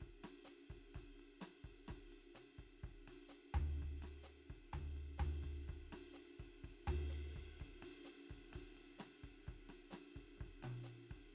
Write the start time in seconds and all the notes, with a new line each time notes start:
0.01 kick, ride
0.07 kick
0.24 cross-stick, ride
0.45 hi-hat pedal, ride
0.70 kick, ride
0.75 kick
0.95 kick, snare, ride
1.01 kick
1.20 ride
1.41 cross-stick, hi-hat pedal, ride
1.64 kick, ride
1.88 kick, cross-stick, snare, ride
1.95 kick
2.12 ride
2.35 snare, hi-hat pedal, ride
2.59 kick, ride
2.84 kick, ride
2.89 kick
3.08 snare, ride
3.29 hi-hat pedal, ride
3.54 kick, floor tom, ride
3.62 kick
3.79 kick, ride
3.87 kick
4.02 cross-stick, ride
4.24 hi-hat pedal, ride
4.50 kick, ride
4.55 kick
4.73 kick, floor tom, ride
4.80 kick
4.97 ride
5.18 floor tom, hi-hat pedal, ride
5.43 kick, ride
5.48 kick, snare
5.68 kick, ride
5.74 kick
5.93 cross-stick, snare, ride
6.14 hi-hat pedal, ride
6.40 kick, ride
6.64 kick, ride
6.69 kick
6.88 floor tom, ride
7.10 hi-hat pedal, ride
7.22 snare
7.36 kick, ride
7.41 kick
7.60 kick, ride
7.66 kick
7.82 snare, ride
8.05 hi-hat pedal, ride
8.30 kick, ride
8.36 kick
8.52 kick, snare, ride
8.60 kick
8.77 ride
8.99 cross-stick, snare, hi-hat pedal, ride
9.24 kick, ride
9.47 kick, ride
9.54 kick
9.69 cross-stick, snare, ride
9.91 cross-stick, hi-hat pedal, ride
10.16 kick, ride
10.38 kick, mid tom, ride
10.46 kick
10.63 high tom, ride
10.84 hi-hat pedal
10.88 ride
11.11 kick, ride
11.16 kick